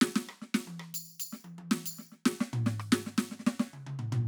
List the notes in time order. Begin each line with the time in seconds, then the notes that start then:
0.02 snare
0.16 snare
0.29 high tom
0.42 snare
0.55 snare
0.68 high tom
0.80 high tom
0.95 percussion
1.20 percussion
1.33 snare
1.45 high tom
1.58 high tom
1.71 snare
1.86 percussion
1.99 snare
2.12 snare
2.26 snare
2.41 snare
2.53 floor tom
2.67 snare
2.80 cross-stick
2.92 snare
3.07 snare
3.18 snare
3.32 snare
3.40 snare
3.47 snare
3.60 snare
3.74 mid tom
3.87 mid tom
3.99 floor tom
4.13 floor tom